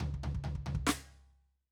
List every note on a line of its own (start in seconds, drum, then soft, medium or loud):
0.00 floor tom medium
0.00 high tom medium
0.14 kick soft
0.23 floor tom medium
0.23 high tom medium
0.35 kick soft
0.44 floor tom medium
0.44 high tom medium
0.55 kick soft
0.66 floor tom medium
0.66 high tom medium
0.75 kick medium
0.87 snare loud
0.89 snare loud